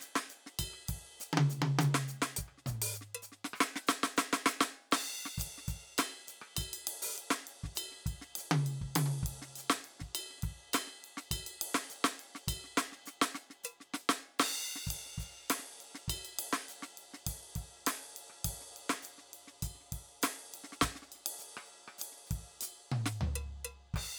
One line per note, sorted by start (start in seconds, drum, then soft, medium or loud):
0.01 hi-hat pedal medium
0.01 ride soft
0.16 snare loud
0.30 hi-hat pedal medium
0.30 ride soft
0.46 snare soft
0.59 kick soft
0.59 hi-hat pedal medium
0.59 ride bell loud
0.68 kick soft
0.73 cross-stick soft
0.88 kick soft
0.88 hi-hat pedal soft
0.88 ride medium
0.96 kick soft
1.20 hi-hat pedal loud
1.33 high tom loud
1.37 high tom loud
1.50 hi-hat pedal medium
1.62 high tom loud
1.79 hi-hat pedal loud
1.79 high tom loud
1.85 high tom soft
1.95 snare loud
2.08 hi-hat pedal medium
2.22 snare loud
2.37 kick soft
2.37 closed hi-hat loud
2.37 hi-hat pedal medium
2.48 cross-stick soft
2.58 snare soft
2.66 kick soft
2.66 hi-hat pedal medium
2.66 mid tom medium
2.82 closed hi-hat loud
2.94 hi-hat pedal medium
3.01 snare soft
3.15 percussion loud
3.22 hi-hat pedal medium
3.32 snare soft
3.45 snare medium
3.54 cross-stick medium
3.54 hi-hat pedal soft
3.61 snare loud
3.76 snare medium
3.87 snare loud
3.87 hi-hat pedal medium
4.03 snare loud
4.17 snare loud
4.17 hi-hat pedal medium
4.33 snare loud
4.46 snare loud
4.46 hi-hat pedal medium
4.61 snare loud
4.92 snare loud
4.92 crash loud
5.26 snare medium
5.38 kick soft
5.38 hi-hat pedal loud
5.38 ride loud
5.44 kick soft
5.47 kick soft
5.58 snare soft
5.62 snare soft
5.66 kick soft
5.66 snare soft
5.66 hi-hat pedal medium
5.66 ride medium
5.69 snare soft
5.75 kick soft
5.79 kick soft
5.98 snare loud
5.98 hi-hat pedal medium
5.98 ride bell loud
6.28 hi-hat pedal medium
6.28 ride medium
6.42 cross-stick medium
6.56 kick soft
6.56 snare soft
6.56 hi-hat pedal medium
6.56 ride bell loud
6.67 kick soft
6.73 ride bell medium
6.87 hi-hat pedal soft
6.87 ride loud
7.02 open hi-hat loud
7.18 ride medium
7.31 snare loud
7.47 ride medium
7.64 kick soft
7.64 snare soft
7.75 hi-hat pedal medium
7.75 ride bell loud
7.92 snare soft
8.06 kick medium
8.06 ride bell medium
8.13 kick soft
8.16 kick soft
8.22 snare soft
8.36 hi-hat pedal medium
8.36 ride loud
8.51 high tom loud
8.66 ride bell medium
8.82 kick soft
8.95 hi-hat pedal medium
8.95 high tom loud
8.95 ride loud
9.06 high tom medium
9.23 kick medium
9.23 ride medium
9.33 kick soft
9.42 snare soft
9.56 hi-hat pedal medium
9.56 ride bell medium
9.70 snare loud
9.84 ride soft
10.00 kick soft
10.00 snare soft
10.15 hi-hat pedal medium
10.15 ride bell loud
10.30 snare soft
10.38 snare soft
10.43 kick medium
10.43 ride medium
10.50 kick soft
10.73 snare loud
10.73 hi-hat pedal medium
10.73 ride bell loud
10.87 snare soft
11.04 ride soft
11.17 snare medium
11.31 kick soft
11.31 hi-hat pedal medium
11.31 ride bell loud
11.40 kick soft
11.47 ride bell medium
11.62 ride loud
11.75 snare loud
11.81 cross-stick soft
11.90 hi-hat pedal medium
11.90 ride soft
12.04 snare loud
12.11 snare soft
12.20 ride soft
12.35 snare medium
12.48 kick medium
12.48 hi-hat pedal medium
12.48 ride bell loud
12.54 kick soft
12.57 kick soft
12.64 snare soft
12.77 snare loud
12.92 snare soft
13.06 snare soft
13.06 hi-hat pedal medium
13.22 snare loud
13.34 snare medium
13.34 hi-hat pedal soft
13.50 snare soft
13.64 hi-hat pedal medium
13.64 percussion loud
13.81 snare soft
13.94 snare medium
13.98 hi-hat pedal soft
14.09 snare loud
14.39 snare loud
14.39 crash loud
14.46 cross-stick soft
14.76 snare soft
14.87 kick soft
14.87 hi-hat pedal medium
14.91 kick soft
14.91 ride loud
15.06 snare soft
15.09 snare soft
15.18 kick soft
15.18 hi-hat pedal medium
15.18 ride soft
15.24 kick soft
15.50 snare loud
15.50 hi-hat pedal medium
15.50 ride loud
15.59 snare soft
15.79 hi-hat pedal soft
15.79 ride soft
15.95 snare medium
16.08 kick soft
16.08 snare soft
16.08 hi-hat pedal medium
16.08 ride bell loud
16.16 kick soft
16.16 snare soft
16.20 snare soft
16.23 snare soft
16.23 ride bell medium
16.25 snare soft
16.39 ride loud
16.53 snare loud
16.69 hi-hat pedal medium
16.69 ride soft
16.83 snare medium
16.98 ride medium
17.14 snare soft
17.27 kick soft
17.27 hi-hat pedal medium
17.27 ride loud
17.35 kick soft
17.35 snare soft
17.56 kick soft
17.56 ride medium
17.87 snare loud
17.87 hi-hat pedal medium
17.87 ride loud
17.95 cross-stick soft
18.15 hi-hat pedal soft
18.15 ride medium
18.30 cross-stick soft
18.45 kick soft
18.45 hi-hat pedal medium
18.45 ride loud
18.54 kick soft
18.61 snare soft
18.73 hi-hat pedal soft
18.73 ride soft
18.90 snare loud
18.94 cross-stick medium
19.03 hi-hat pedal medium
19.03 ride medium
19.18 snare soft
19.24 snare soft
19.33 ride medium
19.48 snare soft
19.58 snare soft
19.62 kick soft
19.62 hi-hat pedal medium
19.62 ride bell medium
19.71 kick soft
19.71 snare soft
19.81 snare soft
19.85 snare soft
19.88 kick soft
19.88 snare soft
19.88 hi-hat pedal soft
19.88 ride medium
20.22 snare loud
20.22 hi-hat pedal medium
20.22 ride loud
20.52 hi-hat pedal soft
20.52 ride medium
20.64 snare soft
20.72 snare soft
20.81 kick soft
20.81 snare loud
20.81 hi-hat pedal medium
20.96 snare soft
21.02 snare soft
21.08 snare soft
21.12 snare soft
21.12 ride bell soft
21.20 snare soft
21.26 ride loud
21.39 hi-hat pedal medium
21.57 cross-stick medium
21.66 hi-hat pedal soft
21.88 cross-stick medium
21.99 hi-hat pedal medium
21.99 ride loud
22.12 snare soft
22.17 snare soft
22.26 hi-hat pedal soft
22.31 kick medium
22.31 ride medium
22.38 kick soft
22.41 kick soft
22.61 hi-hat pedal loud
22.61 ride bell medium
22.92 mid tom loud
23.06 snare loud
23.21 floor tom loud
23.36 percussion loud
23.65 percussion loud
23.94 kick medium
23.94 cross-stick medium
23.94 crash medium
24.01 kick soft
24.01 cross-stick soft
24.05 kick soft